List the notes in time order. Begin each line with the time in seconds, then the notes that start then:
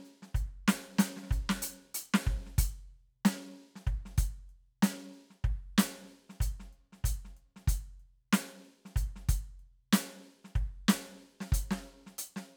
0.01 snare
0.05 closed hi-hat
0.23 snare
0.35 closed hi-hat, kick
0.68 closed hi-hat, snare
0.99 closed hi-hat, snare
1.17 snare
1.24 snare
1.27 snare
1.29 closed hi-hat, kick, snare
1.50 snare
1.63 closed hi-hat
1.95 closed hi-hat
2.14 snare
2.27 kick
2.47 snare
2.59 closed hi-hat, kick
3.26 closed hi-hat, snare
3.49 snare
3.57 closed hi-hat
3.76 snare
3.87 kick, closed hi-hat
4.06 snare
4.18 closed hi-hat, kick
4.50 closed hi-hat
4.83 closed hi-hat, snare
5.14 closed hi-hat
5.31 snare
5.45 kick, closed hi-hat
5.78 closed hi-hat, snare
6.04 snare
6.10 closed hi-hat
6.30 snare
6.41 closed hi-hat, kick
6.60 snare
6.73 closed hi-hat
6.93 snare
7.05 closed hi-hat, kick
7.25 snare
7.37 closed hi-hat
7.57 snare
7.68 closed hi-hat, kick
8.00 closed hi-hat
8.33 closed hi-hat, snare
8.66 closed hi-hat
8.86 snare
8.96 closed hi-hat, kick
9.16 snare
9.29 closed hi-hat, kick
9.60 closed hi-hat
9.93 closed hi-hat, snare
10.25 closed hi-hat
10.45 snare
10.56 kick, closed hi-hat
10.60 crash
10.89 closed hi-hat, snare
11.41 snare
11.53 closed hi-hat, kick
11.71 snare
11.85 closed hi-hat
12.07 snare
12.19 closed hi-hat
12.37 snare